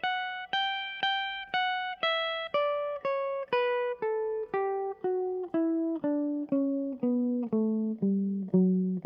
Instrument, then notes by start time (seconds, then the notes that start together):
electric guitar
0.04 F#5
0.53 G5
1.03 G5
1.54 F#5
2.03 E5
2.54 D5
3.05 C#5
3.53 B4
4.03 A4
4.54 G4
5.05 F#4
5.54 E4
6.04 D4
6.53 C#4
7.04 B3
7.53 A3
8.03 G3
8.45 F#3
8.54 F#3